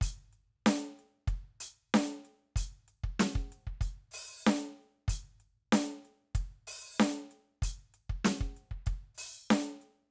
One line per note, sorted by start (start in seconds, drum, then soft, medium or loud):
0.01 closed hi-hat loud
0.01 kick medium
0.33 closed hi-hat soft
0.66 closed hi-hat loud
0.66 snare loud
0.99 closed hi-hat soft
1.28 kick medium
1.28 closed hi-hat soft
1.60 open hi-hat loud
1.94 snare loud
1.94 hi-hat pedal medium
1.94 open hi-hat medium
2.25 closed hi-hat soft
2.56 closed hi-hat loud
2.56 kick medium
2.88 closed hi-hat soft
3.04 kick medium
3.19 closed hi-hat loud
3.19 snare loud
3.35 kick medium
3.52 closed hi-hat soft
3.67 kick soft
3.81 closed hi-hat medium
3.81 kick medium
4.11 open hi-hat loud
4.11 hi-hat pedal medium
4.46 snare loud
4.46 hi-hat pedal medium
5.08 closed hi-hat loud
5.08 kick medium
5.40 closed hi-hat soft
5.72 closed hi-hat loud
5.72 snare loud
6.05 closed hi-hat soft
6.35 kick medium
6.35 closed hi-hat medium
6.67 open hi-hat loud
7.00 open hi-hat medium
7.00 snare loud
7.00 hi-hat pedal medium
7.31 closed hi-hat soft
7.62 closed hi-hat loud
7.62 kick medium
7.94 closed hi-hat soft
8.09 kick medium
8.25 closed hi-hat loud
8.25 snare loud
8.41 kick medium
8.57 closed hi-hat soft
8.71 kick soft
8.86 kick medium
8.86 closed hi-hat medium
9.14 open hi-hat loud
9.14 hi-hat pedal soft
9.50 snare loud
9.50 hi-hat pedal medium
9.81 closed hi-hat soft